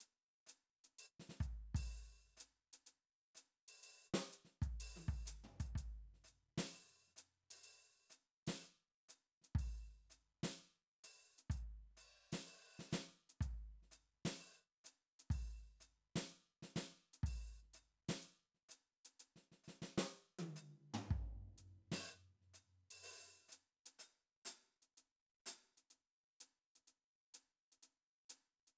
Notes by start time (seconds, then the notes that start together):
0.01 open hi-hat
0.47 closed hi-hat, hi-hat pedal
0.85 closed hi-hat
0.99 open hi-hat
1.20 snare
1.30 snare
1.41 kick, closed hi-hat, hi-hat pedal
1.75 kick, open hi-hat
1.92 open hi-hat
2.38 closed hi-hat, hi-hat pedal
2.74 open hi-hat
2.87 open hi-hat
3.35 closed hi-hat, hi-hat pedal
3.69 open hi-hat
3.84 open hi-hat
4.15 snare
4.30 closed hi-hat, hi-hat pedal
4.46 snare
4.62 kick, closed hi-hat
4.81 open hi-hat
4.97 high tom
5.09 kick
5.26 closed hi-hat, hi-hat pedal
5.45 floor tom
5.61 kick, open hi-hat
5.76 kick, open hi-hat
6.15 snare
6.25 closed hi-hat, hi-hat pedal
6.58 snare, open hi-hat
6.73 open hi-hat
7.08 snare
7.17 closed hi-hat, hi-hat pedal
7.51 open hi-hat
7.64 open hi-hat
8.11 closed hi-hat, hi-hat pedal
8.47 snare, open hi-hat
8.62 open hi-hat
9.09 closed hi-hat, hi-hat pedal
9.42 snare, closed hi-hat
9.56 kick, open hi-hat
10.11 closed hi-hat, hi-hat pedal
10.44 snare, open hi-hat
10.58 open hi-hat
11.04 hi-hat pedal, open hi-hat
11.39 closed hi-hat
11.51 kick, open hi-hat
11.98 hi-hat pedal
12.33 snare, open hi-hat
12.46 open hi-hat
12.80 snare
12.92 snare, closed hi-hat, hi-hat pedal
13.30 closed hi-hat
13.41 kick, open hi-hat
13.83 snare
13.92 closed hi-hat, hi-hat pedal
14.26 snare, open hi-hat
14.39 open hi-hat
14.85 closed hi-hat, hi-hat pedal
15.20 closed hi-hat
15.31 kick, open hi-hat
15.81 closed hi-hat, hi-hat pedal
16.16 snare, open hi-hat
16.30 open hi-hat
16.63 snare
16.76 snare, closed hi-hat, hi-hat pedal
17.14 closed hi-hat
17.24 kick, open hi-hat
17.63 snare
17.74 hi-hat pedal, open hi-hat
18.09 snare, open hi-hat
18.23 open hi-hat
18.55 snare
18.70 closed hi-hat, hi-hat pedal
19.05 closed hi-hat
19.20 open hi-hat
19.37 snare
19.52 snare
19.64 snare, hi-hat pedal
19.83 snare
19.98 snare
20.39 high tom
20.57 hi-hat pedal
20.95 floor tom
21.11 kick
21.58 closed hi-hat
21.92 open hi-hat, snare
22.42 snare
22.54 closed hi-hat, hi-hat pedal
22.91 open hi-hat
23.03 open hi-hat
23.49 closed hi-hat, hi-hat pedal
23.86 closed hi-hat
24.00 closed hi-hat
24.46 closed hi-hat
24.83 closed hi-hat
24.98 closed hi-hat
25.47 closed hi-hat
25.78 closed hi-hat
25.91 closed hi-hat
26.41 closed hi-hat
26.76 closed hi-hat
26.88 closed hi-hat
27.35 closed hi-hat
27.73 closed hi-hat
27.83 closed hi-hat
28.30 closed hi-hat
28.68 closed hi-hat